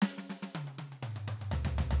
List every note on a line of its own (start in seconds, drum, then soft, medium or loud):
0.05 snare loud
0.18 snare medium
0.29 snare medium
0.42 snare medium
0.55 high tom loud
0.67 high tom medium
0.78 high tom loud
0.92 high tom medium
1.02 mid tom loud
1.16 mid tom medium
1.28 mid tom loud
1.41 mid tom medium
1.51 floor tom loud
1.65 floor tom loud
1.78 floor tom loud
1.91 floor tom loud